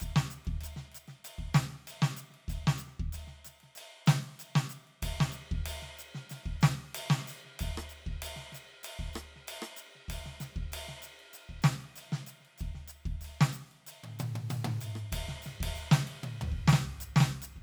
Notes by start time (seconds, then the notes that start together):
0.01 kick, ride, percussion
0.17 snare
0.31 percussion
0.46 kick, ride
0.62 ride bell, percussion
0.77 snare
0.93 snare, ride, percussion
1.09 snare, ride
1.25 ride, percussion
1.39 kick
1.55 snare, percussion
1.71 snare
1.88 ride bell, percussion
2.03 snare
2.17 ride, percussion
2.31 snare, ride
2.49 kick, ride bell, percussion
2.68 snare
2.79 percussion
2.88 snare
3.00 kick
3.13 ride bell, percussion
3.28 snare
3.46 snare, ride, percussion
3.61 snare, ride
3.76 ride bell, percussion
4.07 snare, percussion
4.24 ride
4.40 ride bell, percussion
4.56 snare
4.70 ride, percussion
4.87 snare, ride
5.03 kick, ride, percussion
5.21 snare
5.33 percussion
5.52 kick
5.67 ride, percussion
5.83 snare
5.98 ride, percussion
6.16 snare, ride
6.30 snare, ride, percussion
6.46 kick
6.62 snare, percussion
6.81 snare
6.96 ride, percussion
7.11 snare
7.27 ride, percussion
7.43 snare, ride
7.60 kick, ride, percussion
7.78 cross-stick
7.90 percussion
8.07 kick
8.23 ride, percussion
8.37 snare
8.53 snare, ride, percussion
8.70 ride
8.84 ride, percussion
9.00 kick
9.14 cross-stick, ride, percussion
9.37 snare
9.48 ride, percussion
9.63 cross-stick
9.77 percussion
9.96 snare
10.09 kick, ride, percussion
10.27 snare
10.41 snare, ride, percussion
10.57 kick
10.73 ride, percussion
10.89 snare
11.03 snare, ride, percussion
11.20 ride
11.34 ride bell, percussion
11.50 kick
11.63 snare, percussion
11.81 snare, ride
11.97 ride bell, percussion
12.13 snare
12.27 ride, percussion
12.41 snare
12.46 ride
12.59 kick, ride bell, percussion
12.76 snare
12.89 ride, percussion
13.06 kick, ride
13.22 ride bell, percussion
13.42 snare
13.54 percussion
13.72 ride
13.87 ride bell, percussion
14.04 high tom, percussion
14.20 high tom, percussion
14.36 high tom
14.51 high tom, percussion
14.65 high tom
14.82 ride, percussion
14.96 cross-stick
15.13 kick, ride, percussion
15.29 snare
15.43 snare, percussion
15.61 kick, ride
15.76 ride, percussion
15.92 snare
16.08 ride
16.24 high tom
16.42 floor tom
16.52 kick
16.69 snare
16.74 snare
17.01 percussion
17.17 snare
17.21 snare
17.43 percussion
17.57 kick